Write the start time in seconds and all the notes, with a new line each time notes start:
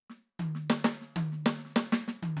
0.10 snare
0.39 high tom
0.55 snare
0.70 snare
0.84 snare
1.01 snare
1.16 high tom
1.32 snare
1.46 snare
1.58 snare
1.65 snare
1.70 snare
1.76 snare
1.92 snare
2.08 snare
2.23 high tom
2.37 mid tom